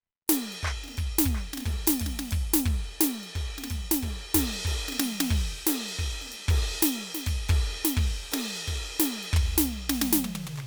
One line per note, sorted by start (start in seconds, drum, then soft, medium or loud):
0.28 snare loud
0.28 hi-hat pedal medium
0.28 ride loud
0.52 ride medium
0.63 kick medium
0.63 percussion loud
0.84 snare soft
0.88 snare soft
0.91 snare soft
0.97 kick medium
0.97 hi-hat pedal medium
0.97 ride medium
1.18 snare loud
1.18 ride medium
1.25 kick medium
1.25 ride medium
1.34 percussion medium
1.53 snare medium
1.57 snare medium
1.60 snare soft
1.65 kick medium
1.65 hi-hat pedal medium
1.65 ride medium
1.87 snare loud
1.87 ride loud
2.00 kick medium
2.00 ride loud
2.06 snare medium
2.19 snare medium
2.31 kick medium
2.31 hi-hat pedal soft
2.31 ride loud
2.53 snare loud
2.53 ride loud
2.65 kick medium
2.65 ride medium
3.01 snare loud
3.01 hi-hat pedal medium
3.01 ride medium
3.23 ride medium
3.35 kick medium
3.35 ride medium
3.58 snare medium
3.64 snare medium
3.69 kick medium
3.69 hi-hat pedal soft
3.69 ride medium
3.91 snare loud
3.91 ride medium
4.03 kick medium
4.03 ride medium
4.34 kick medium
4.34 snare loud
4.34 hi-hat pedal medium
4.34 ride loud
4.50 snare soft
4.50 ride medium
4.65 kick medium
4.65 ride loud
4.88 snare medium
4.92 snare medium
4.99 snare loud
4.99 hi-hat pedal loud
5.20 snare loud
5.30 kick medium
5.30 crash medium
5.65 snare loud
5.65 hi-hat pedal medium
5.65 ride loud
5.88 ride medium
5.99 kick medium
5.99 ride medium
6.21 snare soft
6.25 snare soft
6.31 snare soft
6.31 hi-hat pedal soft
6.31 ride medium
6.48 kick loud
6.48 ride loud
6.82 snare loud
6.93 ride medium
7.14 snare medium
7.26 kick medium
7.26 ride loud
7.49 kick loud
7.49 ride loud
7.85 snare loud
7.96 kick medium
7.96 snare soft
7.96 crash medium
8.31 snare loud
8.31 hi-hat pedal medium
8.31 ride loud
8.55 ride medium
8.68 kick medium
8.68 ride medium
9.00 snare loud
9.00 hi-hat pedal medium
9.00 ride loud
9.23 ride medium
9.33 kick loud
9.33 floor tom loud
9.58 snare loud
9.89 snare loud
10.01 snare loud
10.13 snare loud
10.24 high tom loud
10.35 high tom loud
10.47 mid tom medium
10.56 percussion medium